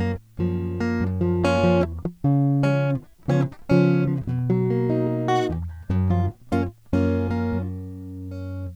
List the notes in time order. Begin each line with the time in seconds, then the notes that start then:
0.00 F#2 F3 A#3
0.41 F#2 F3 A#3
0.82 A#3
1.03 F#2
1.22 F3
1.45 A#3 C#4 F4
1.65 F3
2.07 F3
2.26 C#3
2.65 F3 G#3 C#4 F4
3.30 C#3 F3 B3 C#4
3.71 C#3 F3 B3 C#4
4.10 F3
4.29 B2
4.51 F#3
4.72 A#3
4.91 D#4
5.29 F#4
5.51 F2
5.92 F#2
6.11 F3 C#4 F4
6.53 F#2 A#3 C#4 F4
6.95 F#2 A#3 C#4 F4
7.33 A#3
7.55 F#2